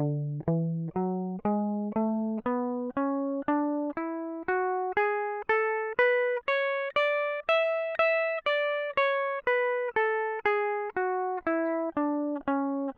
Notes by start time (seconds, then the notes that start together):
0.00 D3
0.49 E3
0.97 F#3
1.46 G#3
1.96 A3
2.46 B3
2.97 C#4
3.49 D4
3.97 E4
4.48 F#4
4.97 G#4
5.49 A4
5.99 B4
6.48 C#5
6.96 D5
7.49 E5
7.99 E5
8.46 D5
8.97 C#5
9.47 B4
9.96 A4
10.46 G#4
10.97 F#4
11.47 E4
11.97 D4
12.48 C#4